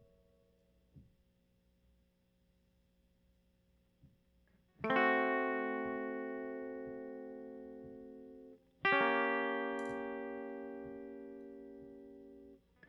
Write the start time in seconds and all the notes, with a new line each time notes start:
4.85 A3
4.90 C4
4.97 F#4
8.85 G4
8.93 C#4
9.01 A#3